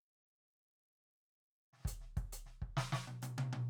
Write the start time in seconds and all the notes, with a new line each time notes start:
1.73 snare
1.77 snare
1.80 snare
1.85 closed hi-hat, kick
2.01 snare
2.17 kick, closed hi-hat
2.32 closed hi-hat
2.46 snare
2.62 kick
2.77 snare
2.92 snare
3.07 high tom
3.22 hi-hat pedal, high tom
3.38 high tom
3.53 high tom